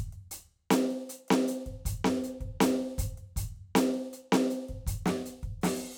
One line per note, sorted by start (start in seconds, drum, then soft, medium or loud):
0.12 closed hi-hat soft
0.31 closed hi-hat loud
0.51 closed hi-hat soft
0.70 closed hi-hat loud
0.70 snare loud
0.90 closed hi-hat soft
1.07 closed hi-hat loud
1.07 hi-hat pedal soft
1.28 snare loud
1.28 closed hi-hat soft
1.48 closed hi-hat loud
1.66 kick soft
1.66 closed hi-hat soft
1.85 closed hi-hat loud
1.85 kick medium
1.85 cross-stick soft
2.04 snare loud
2.04 closed hi-hat soft
2.24 closed hi-hat medium
2.40 kick soft
2.40 closed hi-hat soft
2.60 open hi-hat loud
2.60 snare loud
2.60 hi-hat pedal medium
2.98 closed hi-hat loud
2.98 kick medium
2.98 hi-hat pedal medium
3.17 closed hi-hat soft
3.36 closed hi-hat loud
3.36 kick medium
3.56 closed hi-hat soft
3.75 closed hi-hat loud
3.75 snare loud
3.94 closed hi-hat soft
4.13 closed hi-hat medium
4.32 snare loud
4.32 closed hi-hat soft
4.50 closed hi-hat medium
4.68 kick soft
4.68 closed hi-hat soft
4.86 closed hi-hat loud
4.86 kick medium
5.06 snare loud
5.26 closed hi-hat medium
5.43 kick medium
5.43 closed hi-hat soft
5.61 open hi-hat loud
5.61 snare loud
5.61 hi-hat pedal soft